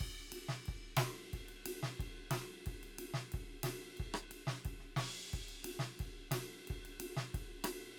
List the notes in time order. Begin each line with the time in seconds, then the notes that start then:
0.01 kick, ride
0.32 ride
0.49 snare
0.66 kick, ride
0.97 snare, ride
1.34 kick, ride
1.49 ride
1.66 ride
1.83 snare
2.00 kick, ride
2.31 snare, ride
2.66 kick, ride
2.83 ride
2.99 ride
3.14 snare
3.32 kick, ride
3.64 snare, ride
3.82 snare
3.98 kick, ride
4.14 cross-stick
4.32 ride
4.47 snare
4.65 kick, ride
4.80 snare
4.97 snare, ride
5.28 snare
5.34 kick, ride
5.49 ride
5.65 ride
5.80 snare
6.00 kick, ride
6.32 snare, ride
6.68 kick, ride
6.86 ride
7.00 ride
7.17 snare
7.35 kick, ride
7.64 cross-stick, ride